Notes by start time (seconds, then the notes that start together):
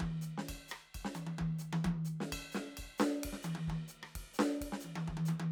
0.01 kick, high tom
0.22 hi-hat pedal
0.38 snare
0.49 kick, ride bell
0.69 cross-stick, hi-hat pedal
0.95 kick, ride bell
1.05 snare
1.15 hi-hat pedal, high tom
1.27 high tom
1.39 kick, high tom
1.59 hi-hat pedal, high tom
1.73 high tom
1.85 kick, high tom
2.06 hi-hat pedal
2.21 snare
2.33 kick, ride bell
2.53 snare, hi-hat pedal
2.78 kick, ride bell
2.84 kick
2.99 snare, hi-hat pedal
3.24 kick, ride
3.33 snare
3.44 hi-hat pedal, high tom
3.56 high tom
3.68 kick, high tom
3.89 hi-hat pedal
4.04 cross-stick
4.16 kick, ride
4.34 hi-hat pedal
4.40 snare
4.62 kick, ride
4.73 snare
4.81 hi-hat pedal
4.85 high tom
4.96 high tom
5.08 kick, high tom
5.18 high tom
5.26 hi-hat pedal, high tom
5.40 high tom